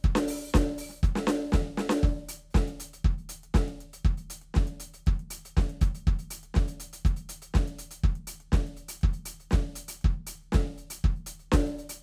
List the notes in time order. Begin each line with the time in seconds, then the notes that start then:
0.01 kick, closed hi-hat, hi-hat pedal
0.15 snare
0.28 open hi-hat
0.50 hi-hat pedal
0.54 closed hi-hat, kick, snare
0.78 open hi-hat
0.89 snare
0.97 hi-hat pedal
1.03 closed hi-hat, kick
1.16 snare
1.27 snare
1.50 kick, snare, hi-hat pedal
1.78 snare
1.90 snare
2.03 kick
2.29 closed hi-hat
2.51 hi-hat pedal
2.55 kick, snare
2.68 closed hi-hat
2.80 closed hi-hat
2.94 closed hi-hat
3.05 kick, closed hi-hat
3.18 closed hi-hat
3.29 closed hi-hat
3.44 closed hi-hat
3.54 kick, snare
3.68 closed hi-hat
3.81 closed hi-hat
3.93 closed hi-hat
4.05 kick, closed hi-hat
4.18 closed hi-hat
4.30 closed hi-hat
4.42 closed hi-hat
4.54 kick, snare
4.67 closed hi-hat
4.80 closed hi-hat
4.94 closed hi-hat
5.07 kick, closed hi-hat
5.19 closed hi-hat
5.31 closed hi-hat
5.45 closed hi-hat
5.57 kick, snare
5.70 closed hi-hat
5.81 closed hi-hat, kick
5.95 closed hi-hat
6.07 kick, closed hi-hat
6.19 closed hi-hat
6.31 closed hi-hat
6.43 closed hi-hat
6.54 kick, snare
6.68 closed hi-hat
6.80 closed hi-hat
6.93 closed hi-hat
7.05 kick, closed hi-hat
7.17 closed hi-hat
7.29 closed hi-hat
7.42 closed hi-hat
7.54 kick, snare
7.68 closed hi-hat
7.79 closed hi-hat
7.91 closed hi-hat
8.04 kick, closed hi-hat
8.16 closed hi-hat
8.27 closed hi-hat
8.40 closed hi-hat
8.52 kick, snare
8.67 closed hi-hat
8.77 closed hi-hat
8.89 closed hi-hat
9.01 kick, closed hi-hat
9.13 closed hi-hat
9.26 closed hi-hat
9.40 open hi-hat
9.50 kick, snare, hi-hat pedal
9.76 closed hi-hat
9.88 closed hi-hat
10.01 kick, closed hi-hat
10.27 closed hi-hat
10.42 closed hi-hat
10.52 kick, snare
10.68 closed hi-hat
10.78 closed hi-hat
10.90 closed hi-hat
11.04 kick, closed hi-hat
11.16 closed hi-hat
11.27 closed hi-hat
11.39 closed hi-hat
11.52 kick, snare
11.66 closed hi-hat
11.79 closed hi-hat
11.89 closed hi-hat